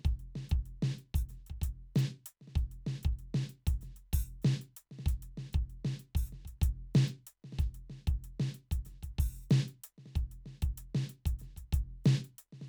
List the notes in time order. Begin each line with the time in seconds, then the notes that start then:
0.01 snare
0.05 kick, closed hi-hat
0.20 closed hi-hat
0.36 snare
0.50 kick, closed hi-hat
0.66 closed hi-hat
0.83 snare
0.99 closed hi-hat
1.15 open hi-hat, kick
1.29 snare, hi-hat pedal
1.47 kick, closed hi-hat
1.62 open hi-hat, kick
1.96 snare, closed hi-hat, hi-hat pedal
2.15 snare
2.26 closed hi-hat
2.41 snare
2.48 snare
2.56 kick, closed hi-hat
2.72 closed hi-hat
2.87 snare
3.03 kick, closed hi-hat
3.13 kick
3.19 closed hi-hat
3.35 snare
3.50 closed hi-hat
3.67 open hi-hat, kick
3.81 snare, hi-hat pedal
3.96 closed hi-hat
4.13 open hi-hat, kick
4.42 snare, hi-hat pedal
4.62 closed hi-hat
4.77 closed hi-hat
4.91 snare
4.99 snare
5.06 closed hi-hat, kick
5.23 closed hi-hat
5.38 snare
5.53 kick, closed hi-hat
5.70 closed hi-hat
5.85 snare
6.00 closed hi-hat
6.15 open hi-hat, kick
6.27 hi-hat pedal
6.33 snare
6.45 kick, closed hi-hat
6.62 open hi-hat, kick
6.94 snare, hi-hat pedal
7.08 closed hi-hat
7.27 closed hi-hat
7.44 snare
7.53 snare
7.59 kick, closed hi-hat
7.75 closed hi-hat
7.90 snare
8.07 kick, closed hi-hat
8.24 closed hi-hat
8.40 snare
8.55 closed hi-hat
8.72 closed hi-hat, kick
8.85 snare, hi-hat pedal
9.03 kick, closed hi-hat
9.19 open hi-hat, kick
9.50 snare, hi-hat pedal
9.68 closed hi-hat
9.84 closed hi-hat
9.98 snare
10.06 snare
10.16 kick, closed hi-hat
10.32 closed hi-hat
10.46 snare
10.62 kick, closed hi-hat
10.78 closed hi-hat
10.95 snare
11.10 closed hi-hat
11.26 kick, open hi-hat
11.39 snare, hi-hat pedal
11.57 kick, closed hi-hat
11.73 open hi-hat, kick
12.05 snare, hi-hat pedal
12.25 closed hi-hat
12.39 closed hi-hat
12.53 snare
12.62 snare